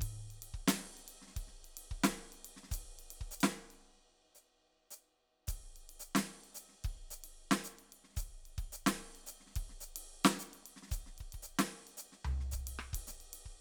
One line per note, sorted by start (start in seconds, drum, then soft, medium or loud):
0.01 kick soft
0.01 ride medium
0.31 ride soft
0.37 snare soft
0.42 ride medium
0.54 kick soft
0.68 snare loud
0.68 ride loud
0.97 snare soft
0.97 ride soft
1.08 ride medium
1.22 snare soft
1.27 snare soft
1.30 snare soft
1.36 kick soft
1.36 ride medium
1.47 snare soft
1.53 snare soft
1.65 ride soft
1.77 ride medium
1.91 kick soft
2.04 snare loud
2.04 ride medium
2.32 ride soft
2.45 ride medium
2.57 snare soft
2.64 snare soft
2.68 kick soft
2.68 snare soft
2.68 hi-hat pedal medium
2.74 ride medium
2.99 ride soft
3.11 ride medium
3.21 kick soft
3.31 hi-hat pedal medium
3.41 snare loud
3.41 ride bell medium
3.71 ride soft
4.35 hi-hat pedal soft
4.91 hi-hat pedal medium
5.47 kick soft
5.47 hi-hat pedal medium
5.47 ride medium
5.63 snare soft
5.76 ride soft
5.89 ride soft
6.00 hi-hat pedal medium
6.15 snare medium
6.15 ride medium
6.18 snare medium
6.44 ride soft
6.55 hi-hat pedal medium
6.55 ride medium
6.69 snare soft
6.72 snare soft
6.84 kick soft
6.84 ride soft
6.94 snare soft
7.11 hi-hat pedal medium
7.11 ride soft
7.24 ride medium
7.51 snare loud
7.51 ride soft
7.64 hi-hat pedal medium
7.79 ride soft
7.92 ride soft
8.04 snare soft
8.09 snare soft
8.12 snare soft
8.16 kick soft
8.16 snare soft
8.16 hi-hat pedal medium
8.21 ride medium
8.46 ride soft
8.58 kick soft
8.58 ride soft
8.72 hi-hat pedal medium
8.87 snare loud
8.87 ride loud
9.15 ride soft
9.27 hi-hat pedal medium
9.27 ride soft
9.40 snare soft
9.46 snare soft
9.50 snare soft
9.56 kick soft
9.56 ride medium
9.70 snare soft
9.81 hi-hat pedal medium
9.81 ride soft
9.96 ride medium
10.25 snare loud
10.25 ride medium
10.39 snare soft
10.39 hi-hat pedal medium
10.54 ride soft
10.66 ride medium
10.76 snare soft
10.83 snare soft
10.87 snare soft
10.91 kick soft
10.91 hi-hat pedal medium
10.91 ride medium
11.06 snare soft
11.18 kick soft
11.18 ride soft
11.33 kick soft
11.33 ride soft
11.43 hi-hat pedal medium
11.59 snare medium
11.59 ride medium
11.87 ride soft
11.97 hi-hat pedal medium
11.97 ride soft
12.12 snare soft
12.25 floor tom loud
12.40 snare soft
12.52 kick soft
12.52 hi-hat pedal medium
12.52 ride soft
12.67 ride medium
12.79 cross-stick medium
12.93 kick soft
12.93 ride medium
13.07 snare soft
13.07 hi-hat pedal medium
13.20 ride soft
13.33 ride medium
13.46 kick soft
13.46 snare soft